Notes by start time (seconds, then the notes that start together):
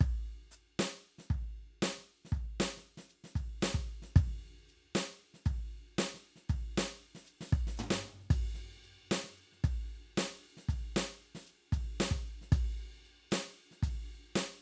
0.01 kick, ride
0.52 hi-hat pedal, ride
0.79 snare, ride
1.04 ride
1.19 snare
1.31 kick, ride
1.83 snare, ride
1.99 snare
2.25 snare
2.32 kick, ride
2.60 snare, ride
2.78 snare
2.86 ride
2.98 snare
3.10 ride
3.24 snare
3.36 kick, ride
3.61 snare, hi-hat pedal, ride
3.75 kick
3.87 ride
4.02 snare
4.16 kick, ride
4.43 ride
4.69 ride
4.95 snare, ride
5.22 ride
5.34 snare
5.46 kick, ride
5.72 ride
5.99 snare, ride
6.15 snare
6.24 ride
6.36 snare
6.49 kick, ride
6.78 snare, ride
7.03 ride
7.15 snare
7.25 hi-hat pedal, ride
7.41 snare
7.53 kick, ride bell
7.67 snare
7.77 floor tom, hi-hat pedal
7.91 snare
8.03 floor tom
8.19 snare
8.31 kick, ride
8.55 snare
8.84 ride
9.12 snare, ride
9.24 snare
9.37 ride
9.53 snare
9.64 kick, ride
10.18 snare, ride
10.44 ride
10.57 snare
10.69 kick, ride
10.97 snare, ride
11.22 ride
11.35 snare
11.47 ride
11.73 kick, ride
12.00 snare, ride
12.11 kick, snare
12.26 ride
12.42 snare
12.52 kick, ride
12.81 ride
13.06 ride
13.32 snare, ride
13.57 ride
13.72 snare
13.83 kick, ride
14.36 snare, ride